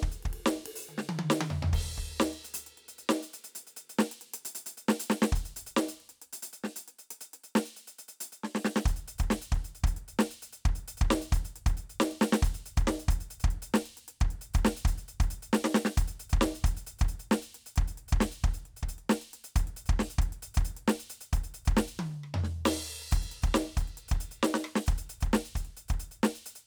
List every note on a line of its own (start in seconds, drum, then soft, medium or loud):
0.03 kick loud
0.12 closed hi-hat medium
0.23 kick medium
0.23 ride soft
0.33 ride medium
0.46 snare loud
0.66 ride loud
0.76 open hi-hat loud
0.89 hi-hat pedal soft
0.89 high tom soft
0.98 snare medium
1.09 high tom loud
1.19 high tom loud
1.30 snare loud
1.41 high tom loud
1.51 floor tom loud
1.63 floor tom loud
1.73 kick medium
1.73 crash loud
1.98 kick medium
2.20 snare loud
2.33 closed hi-hat soft
2.45 closed hi-hat medium
2.54 closed hi-hat loud
2.67 closed hi-hat medium
2.78 closed hi-hat soft
2.89 closed hi-hat medium
2.99 closed hi-hat medium
3.09 snare loud
3.23 closed hi-hat medium
3.34 closed hi-hat medium
3.44 closed hi-hat medium
3.55 closed hi-hat medium
3.67 closed hi-hat soft
3.77 closed hi-hat medium
3.90 closed hi-hat medium
3.99 snare loud
4.12 closed hi-hat medium
4.21 closed hi-hat medium
4.34 closed hi-hat loud
4.45 closed hi-hat loud
4.55 closed hi-hat loud
4.66 closed hi-hat loud
4.78 closed hi-hat medium
4.89 snare loud
5.00 closed hi-hat loud
5.10 snare loud
5.22 snare loud
5.33 closed hi-hat medium
5.33 kick loud
5.45 closed hi-hat medium
5.57 closed hi-hat medium
5.67 closed hi-hat medium
5.77 snare loud
5.89 closed hi-hat medium
6.00 closed hi-hat soft
6.10 closed hi-hat medium
6.22 closed hi-hat medium
6.33 closed hi-hat loud
6.43 closed hi-hat loud
6.53 closed hi-hat medium
6.64 snare medium
6.76 closed hi-hat loud
6.88 closed hi-hat medium
6.99 closed hi-hat medium
7.11 closed hi-hat loud
7.21 closed hi-hat medium
7.34 closed hi-hat medium
7.44 closed hi-hat medium
7.56 snare loud
7.66 closed hi-hat soft
7.77 closed hi-hat medium
7.88 closed hi-hat medium
7.99 closed hi-hat medium
8.09 closed hi-hat medium
8.21 closed hi-hat loud
8.32 closed hi-hat medium
8.44 snare medium
8.55 snare medium
8.65 snare loud
8.76 snare loud
8.86 closed hi-hat medium
8.86 kick loud
8.96 closed hi-hat medium
9.08 closed hi-hat medium
9.19 closed hi-hat medium
9.19 kick loud
9.31 snare loud
9.42 closed hi-hat medium
9.52 kick loud
9.52 closed hi-hat soft
9.65 closed hi-hat medium
9.75 closed hi-hat soft
9.84 closed hi-hat medium
9.84 kick loud
9.97 closed hi-hat medium
10.08 closed hi-hat medium
10.19 snare loud
10.31 closed hi-hat medium
10.42 closed hi-hat medium
10.53 closed hi-hat medium
10.66 kick loud
10.66 closed hi-hat soft
10.76 closed hi-hat medium
10.88 closed hi-hat medium
10.97 closed hi-hat medium
10.97 kick loud
11.11 snare loud
11.22 closed hi-hat medium
11.32 closed hi-hat medium
11.32 kick loud
11.45 closed hi-hat medium
11.56 closed hi-hat medium
11.66 closed hi-hat medium
11.66 kick loud
11.77 closed hi-hat medium
11.90 closed hi-hat soft
12.00 snare loud
12.11 closed hi-hat soft
12.21 snare loud
12.33 snare loud
12.43 closed hi-hat medium
12.43 kick loud
12.55 closed hi-hat medium
12.66 closed hi-hat medium
12.77 closed hi-hat medium
12.77 kick loud
12.87 snare loud
13.00 closed hi-hat medium
13.09 closed hi-hat medium
13.09 kick loud
13.31 closed hi-hat medium
13.40 closed hi-hat medium
13.44 kick loud
13.51 closed hi-hat medium
13.62 closed hi-hat medium
13.74 snare loud
13.86 closed hi-hat medium
13.97 closed hi-hat medium
14.08 closed hi-hat medium
14.21 kick loud
14.21 closed hi-hat soft
14.31 closed hi-hat medium
14.41 closed hi-hat medium
14.54 closed hi-hat medium
14.54 kick loud
14.65 snare loud
14.77 closed hi-hat medium
14.85 closed hi-hat medium
14.85 kick loud
14.98 closed hi-hat medium
15.08 closed hi-hat medium
15.20 closed hi-hat medium
15.20 kick loud
15.31 closed hi-hat medium
15.43 closed hi-hat medium
15.53 snare loud
15.65 snare loud
15.75 snare loud
15.85 snare loud
15.98 closed hi-hat medium
15.98 kick loud
16.08 closed hi-hat medium
16.20 closed hi-hat medium
16.30 closed hi-hat medium
16.30 kick loud
16.41 snare loud
16.55 closed hi-hat medium
16.64 closed hi-hat medium
16.64 kick loud
16.77 closed hi-hat medium
16.87 closed hi-hat medium
16.99 closed hi-hat medium
16.99 kick loud
17.09 closed hi-hat medium
17.20 closed hi-hat medium
17.32 snare loud
17.42 closed hi-hat medium
17.55 closed hi-hat medium
17.66 closed hi-hat medium
17.76 kick loud
17.76 closed hi-hat medium
17.88 closed hi-hat medium
17.98 closed hi-hat medium
18.09 closed hi-hat medium
18.13 kick loud
18.21 snare loud
18.32 closed hi-hat soft
18.44 kick loud
18.44 closed hi-hat soft
18.54 closed hi-hat medium
18.66 closed hi-hat soft
18.77 closed hi-hat medium
18.83 kick medium
18.89 closed hi-hat medium
18.99 closed hi-hat soft
19.10 snare loud
19.22 closed hi-hat medium
19.34 closed hi-hat medium
19.44 closed hi-hat medium
19.56 closed hi-hat medium
19.56 kick loud
19.67 closed hi-hat soft
19.77 closed hi-hat medium
19.86 closed hi-hat medium
19.86 kick loud
20.00 snare loud
20.10 closed hi-hat medium
20.19 kick loud
20.19 closed hi-hat medium
20.33 closed hi-hat medium
20.43 closed hi-hat medium
20.55 closed hi-hat medium
20.55 kick loud
20.65 closed hi-hat medium
20.77 closed hi-hat medium
20.88 snare loud
21.00 closed hi-hat medium
21.10 closed hi-hat medium
21.21 closed hi-hat medium
21.33 closed hi-hat medium
21.33 kick loud
21.44 closed hi-hat medium
21.54 closed hi-hat medium
21.66 closed hi-hat medium
21.66 kick loud
21.77 snare loud
21.88 closed hi-hat medium
21.99 high tom loud
22.11 snare soft
22.24 cross-stick soft
22.34 floor tom loud
22.44 snare medium
22.66 snare loud
22.66 crash loud
23.02 closed hi-hat soft
23.12 closed hi-hat medium
23.12 kick loud
23.22 closed hi-hat soft
23.32 closed hi-hat medium
23.42 closed hi-hat soft
23.42 kick loud
23.55 snare loud
23.77 closed hi-hat medium
23.77 kick loud
23.88 closed hi-hat soft
23.97 closed hi-hat medium
24.09 closed hi-hat medium
24.09 kick loud
24.21 closed hi-hat medium
24.31 closed hi-hat medium
24.43 snare loud
24.55 snare loud
24.65 cross-stick medium
24.76 snare loud
24.87 closed hi-hat medium
24.87 kick loud
24.98 closed hi-hat medium
25.10 closed hi-hat medium
25.21 closed hi-hat medium
25.21 kick loud
25.34 snare loud
25.45 closed hi-hat soft
25.56 closed hi-hat medium
25.56 kick medium
25.65 closed hi-hat soft
25.77 closed hi-hat medium
25.89 closed hi-hat medium
25.89 kick loud
26.00 closed hi-hat medium
26.11 closed hi-hat medium
26.24 snare loud
26.35 closed hi-hat medium
26.46 closed hi-hat medium
26.56 closed hi-hat medium